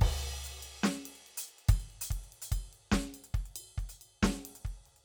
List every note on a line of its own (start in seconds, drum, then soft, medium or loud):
0.01 kick loud
0.01 crash loud
0.44 hi-hat pedal medium
0.62 ride bell medium
0.83 snare loud
0.83 hi-hat pedal medium
1.06 ride medium
1.15 closed hi-hat soft
1.26 ride soft
1.37 closed hi-hat loud
1.48 ride bell soft
1.58 closed hi-hat soft
1.69 kick loud
1.69 ride bell medium
1.80 closed hi-hat soft
1.90 ride soft
2.01 closed hi-hat loud
2.10 kick medium
2.10 ride medium
2.24 closed hi-hat soft
2.32 ride soft
2.42 closed hi-hat loud
2.52 kick medium
2.52 ride bell medium
2.73 ride soft
2.92 kick medium
2.92 snare loud
3.14 ride bell medium
3.24 closed hi-hat medium
3.34 kick medium
3.34 ride soft
3.46 closed hi-hat soft
3.56 ride bell medium
3.78 kick medium
3.78 ride soft
3.89 closed hi-hat medium
4.01 ride bell soft
4.23 kick medium
4.23 snare loud
4.45 ride medium
4.55 closed hi-hat medium
4.65 kick medium
4.65 ride soft
4.86 ride soft
4.86 floor tom soft
4.96 closed hi-hat soft